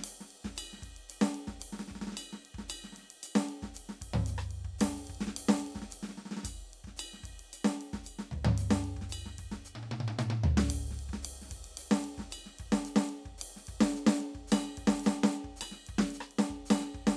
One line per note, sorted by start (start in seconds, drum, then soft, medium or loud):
0.01 snare soft
0.01 ride loud
0.05 hi-hat pedal medium
0.20 snare soft
0.30 ride soft
0.44 kick soft
0.44 snare medium
0.56 hi-hat pedal medium
0.56 ride bell loud
0.73 snare soft
0.78 kick soft
0.78 snare soft
0.82 snare soft
0.82 ride medium
0.89 snare soft
0.96 ride soft
1.09 hi-hat pedal medium
1.09 ride medium
1.21 snare loud
1.34 ride medium
1.47 kick soft
1.47 snare soft
1.60 hi-hat pedal medium
1.60 ride loud
1.72 snare soft
1.79 snare soft
1.87 kick soft
1.87 snare soft
1.95 snare soft
2.01 snare medium
2.07 snare medium
2.12 snare soft
2.17 hi-hat pedal medium
2.17 ride bell loud
2.32 snare soft
2.45 ride soft
2.54 kick soft
2.58 snare soft
2.68 hi-hat pedal medium
2.68 ride bell loud
2.84 snare soft
2.92 snare soft
2.92 ride medium
2.97 snare soft
3.03 snare soft
3.10 ride medium
3.23 hi-hat pedal medium
3.23 ride bell medium
3.35 snare loud
3.48 ride soft
3.62 kick soft
3.62 snare soft
3.74 hi-hat pedal medium
3.74 ride medium
3.89 snare soft
4.01 kick soft
4.01 ride medium
4.13 floor tom loud
4.26 hi-hat pedal medium
4.26 ride medium
4.38 cross-stick medium
4.51 ride soft
4.64 kick soft
4.78 snare medium
4.78 hi-hat pedal medium
4.78 ride loud
4.96 snare soft
5.07 kick soft
5.07 ride soft
5.15 ride soft
5.20 snare medium
5.27 snare medium
5.36 hi-hat pedal medium
5.36 ride loud
5.48 snare loud
5.60 ride soft
5.66 ride soft
5.72 kick soft
5.72 snare soft
5.72 ride soft
5.82 snare soft
5.90 hi-hat pedal medium
5.90 ride medium
6.02 snare medium
6.09 snare soft
6.17 snare soft
6.25 snare soft
6.31 snare medium
6.36 snare medium
6.43 kick soft
6.43 snare soft
6.43 hi-hat pedal medium
6.43 ride bell medium
6.73 ride soft
6.84 kick soft
6.84 snare soft
6.96 hi-hat pedal medium
6.96 ride bell loud
7.13 snare soft
7.20 kick soft
7.20 snare soft
7.23 snare soft
7.23 ride medium
7.29 kick soft
7.29 snare soft
7.39 ride medium
7.53 hi-hat pedal medium
7.53 ride bell medium
7.64 snare medium
7.81 ride medium
7.93 kick soft
7.93 snare medium
8.03 hi-hat pedal medium
8.03 ride bell medium
8.19 snare medium
8.31 kick soft
8.31 floor tom medium
8.38 kick soft
8.45 floor tom loud
8.58 hi-hat pedal medium
8.58 ride medium
8.70 snare medium
8.84 ride soft
8.96 kick soft
9.01 snare soft
9.09 hi-hat pedal medium
9.09 ride bell loud
9.25 snare soft
9.38 kick soft
9.38 ride medium
9.51 snare medium
9.65 hi-hat pedal medium
9.75 mid tom medium
9.83 mid tom medium
9.91 mid tom medium
10.00 mid tom loud
10.08 mid tom medium
10.19 hi-hat pedal medium
10.19 mid tom loud
10.30 mid tom loud
10.43 floor tom loud
10.57 snare loud
10.68 kick soft
10.68 hi-hat pedal medium
10.68 ride loud
10.80 kick soft
10.91 snare soft
10.99 ride soft
11.09 kick soft
11.13 snare medium
11.22 hi-hat pedal medium
11.22 ride loud
11.41 snare soft
11.45 snare soft
11.48 kick soft
11.48 snare soft
11.48 ride medium
11.56 kick soft
11.64 ride medium
11.77 hi-hat pedal medium
11.77 ride loud
11.91 snare loud
12.04 ride medium
12.18 kick soft
12.18 snare soft
12.30 hi-hat pedal medium
12.30 ride bell loud
12.46 snare soft
12.58 kick soft
12.58 ride medium
12.72 snare medium
12.85 hi-hat pedal medium
12.85 ride medium
12.96 snare loud
13.09 ride soft
13.25 kick soft
13.25 snare soft
13.38 hi-hat pedal medium
13.38 ride loud
13.56 snare soft
13.67 kick soft
13.67 ride medium
13.80 snare loud
13.94 hi-hat pedal medium
13.94 ride soft
14.06 snare loud
14.20 ride soft
14.34 kick soft
14.47 hi-hat pedal medium
14.52 snare loud
14.52 ride bell loud
14.77 kick soft
14.77 ride medium
14.87 snare loud
14.99 hi-hat pedal medium
14.99 ride medium
15.06 snare loud
15.15 ride soft
15.23 snare loud
15.44 kick soft
15.56 hi-hat pedal medium
15.61 cross-stick medium
15.61 ride bell loud
15.71 snare soft
15.86 kick soft
15.86 ride medium
15.94 kick soft
15.98 snare loud
16.10 hi-hat pedal medium
16.10 ride medium
16.20 cross-stick medium
16.31 ride soft
16.38 snare medium
16.50 kick soft
16.65 hi-hat pedal medium
16.70 snare loud
16.70 ride bell loud
16.81 snare soft
16.94 kick soft
16.94 ride soft
17.07 snare loud